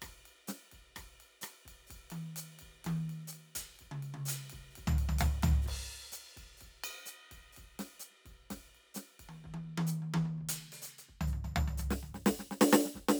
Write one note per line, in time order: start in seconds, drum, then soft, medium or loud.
0.01 kick soft
0.01 cross-stick medium
0.01 hi-hat pedal soft
0.01 ride medium
0.08 kick soft
0.25 ride soft
0.47 snare medium
0.47 hi-hat pedal medium
0.47 ride medium
0.72 kick soft
0.72 ride soft
0.95 kick soft
0.95 cross-stick medium
0.95 hi-hat pedal soft
0.95 ride medium
1.20 ride soft
1.41 cross-stick medium
1.41 hi-hat pedal medium
1.41 ride medium
1.65 kick soft
1.65 ride medium
1.70 kick soft
1.87 kick soft
1.87 hi-hat pedal soft
1.87 ride medium
1.95 kick soft
2.10 high tom medium
2.10 ride medium
2.36 hi-hat pedal medium
2.36 ride medium
2.59 kick soft
2.59 ride medium
2.84 kick soft
2.84 high tom medium
2.84 ride medium
2.90 kick soft
3.09 ride soft
3.27 hi-hat pedal medium
3.33 ride medium
3.55 kick soft
3.55 closed hi-hat medium
3.55 ride medium
3.60 kick soft
3.74 hi-hat pedal soft
3.79 kick soft
3.79 ride soft
3.86 kick soft
3.91 mid tom medium
4.02 ride soft
4.14 mid tom medium
4.25 closed hi-hat loud
4.25 hi-hat pedal medium
4.25 ride medium
4.50 kick soft
4.50 ride medium
4.58 kick soft
4.70 hi-hat pedal soft
4.75 kick soft
4.75 ride medium
4.83 kick soft
4.87 floor tom loud
4.98 ride medium
5.09 floor tom medium
5.19 hi-hat pedal medium
5.19 ride loud
5.19 floor tom loud
5.43 kick soft
5.43 floor tom loud
5.43 ride medium
5.62 kick soft
5.62 hi-hat pedal soft
5.68 crash medium
6.12 hi-hat pedal medium
6.12 ride medium
6.37 kick soft
6.37 ride soft
6.42 kick soft
6.57 hi-hat pedal soft
6.57 ride soft
6.61 kick soft
6.66 kick soft
6.84 ride bell loud
7.06 hi-hat pedal medium
7.06 ride soft
7.31 kick soft
7.31 ride medium
7.36 kick soft
7.52 hi-hat pedal soft
7.56 kick soft
7.56 ride medium
7.63 kick soft
7.79 snare medium
7.79 ride medium
8.00 hi-hat pedal medium
8.04 ride soft
8.10 snare soft
8.25 kick soft
8.25 ride soft
8.31 kick soft
8.50 kick soft
8.50 snare medium
8.50 ride medium
8.56 kick soft
8.75 ride soft
8.94 snare soft
8.94 hi-hat pedal medium
8.94 ride medium
9.19 kick soft
9.19 ride medium
9.29 high tom soft
9.44 kick soft
9.44 high tom soft
9.50 kick soft
9.50 high tom medium
9.68 high tom soft
9.78 high tom loud
9.87 hi-hat pedal medium
10.02 high tom soft
10.14 kick soft
10.14 high tom loud
10.25 high tom soft
10.38 kick soft
10.38 mid tom soft
10.45 kick soft
10.45 closed hi-hat loud
10.61 mid tom soft
10.72 closed hi-hat medium
10.82 closed hi-hat medium
10.82 hi-hat pedal medium
10.98 closed hi-hat soft
11.09 kick soft
11.21 floor tom medium
11.27 hi-hat pedal soft
11.33 kick soft
11.33 floor tom soft
11.40 kick soft
11.44 floor tom medium
11.56 floor tom loud
11.68 floor tom medium
11.77 floor tom medium
11.77 hi-hat pedal medium
11.91 snare medium
12.03 kick soft
12.03 floor tom soft
12.08 kick soft
12.14 snare soft
12.26 kick soft
12.26 snare loud
12.34 kick soft
12.39 snare soft
12.51 snare medium
12.61 snare loud
12.69 snare loud
12.69 hi-hat pedal medium
12.85 snare soft
12.94 kick soft
12.94 snare soft
12.99 kick soft
13.09 snare loud
13.16 hi-hat pedal soft